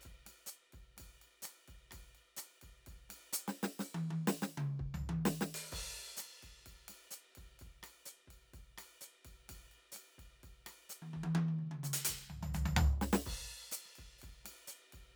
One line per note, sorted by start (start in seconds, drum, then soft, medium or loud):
0.01 hi-hat pedal soft
0.01 ride soft
0.05 kick soft
0.26 snare soft
0.26 ride medium
0.46 hi-hat pedal medium
0.46 ride soft
0.73 kick soft
0.73 ride soft
0.97 kick soft
0.97 snare soft
0.97 ride medium
1.22 ride soft
1.42 cross-stick soft
1.42 snare soft
1.42 hi-hat pedal medium
1.42 ride medium
1.68 kick soft
1.68 ride soft
1.91 kick soft
1.91 cross-stick soft
1.91 snare soft
1.91 ride medium
1.98 kick soft
2.15 ride soft
2.37 cross-stick soft
2.37 snare soft
2.37 hi-hat pedal medium
2.37 ride medium
2.62 kick soft
2.62 ride soft
2.87 kick soft
2.87 ride soft
2.93 kick soft
3.10 snare soft
3.10 ride medium
3.33 hi-hat pedal loud
3.33 ride medium
3.48 snare medium
3.63 snare medium
3.79 snare medium
3.79 hi-hat pedal soft
3.95 high tom medium
4.11 high tom medium
4.28 snare loud
4.42 snare medium
4.58 mid tom medium
4.80 kick soft
4.86 kick soft
4.94 floor tom medium
5.09 high tom medium
5.26 snare loud
5.41 snare medium
5.54 closed hi-hat medium
5.72 kick soft
5.72 crash medium
6.17 cross-stick soft
6.17 hi-hat pedal medium
6.17 ride medium
6.43 kick soft
6.43 ride soft
6.66 kick soft
6.66 ride soft
6.71 snare soft
6.88 snare soft
6.88 ride medium
7.11 hi-hat pedal medium
7.11 ride soft
7.35 kick soft
7.35 ride soft
7.59 kick soft
7.59 hi-hat pedal soft
7.59 ride soft
7.66 kick soft
7.83 cross-stick soft
7.83 snare soft
7.83 ride medium
8.06 hi-hat pedal medium
8.06 ride soft
8.28 kick soft
8.28 ride soft
8.54 kick soft
8.54 hi-hat pedal soft
8.54 ride soft
8.59 kick soft
8.78 cross-stick soft
8.78 snare soft
8.78 ride medium
9.01 hi-hat pedal medium
9.01 ride soft
9.25 kick soft
9.25 ride soft
9.49 kick soft
9.49 snare soft
9.49 ride medium
9.55 kick soft
9.72 ride soft
9.92 snare soft
9.92 hi-hat pedal medium
9.96 ride medium
10.18 kick soft
10.18 ride soft
10.44 kick soft
10.44 ride soft
10.66 cross-stick soft
10.66 snare soft
10.66 ride medium
10.90 hi-hat pedal medium
10.90 ride soft
11.02 high tom soft
11.14 kick soft
11.14 high tom soft
11.24 high tom medium
11.35 high tom loud
11.49 high tom soft
11.59 mid tom soft
11.71 mid tom medium
11.83 hi-hat pedal medium
11.83 mid tom medium
11.94 closed hi-hat loud
12.05 kick soft
12.05 closed hi-hat loud
12.13 kick soft
12.13 closed hi-hat soft
12.21 closed hi-hat soft
12.30 floor tom soft
12.43 floor tom medium
12.54 floor tom medium
12.54 hi-hat pedal medium
12.66 floor tom medium
12.77 floor tom loud
13.02 snare medium
13.13 snare loud
13.26 kick soft
13.26 crash medium
13.33 kick soft
13.72 hi-hat pedal loud
13.72 ride medium
13.86 cross-stick soft
13.96 kick soft
13.96 ride soft
14.19 hi-hat pedal soft
14.19 ride soft
14.23 kick soft
14.28 kick soft
14.45 snare soft
14.45 ride medium
14.68 hi-hat pedal medium
14.68 ride soft
14.93 kick soft
14.93 ride soft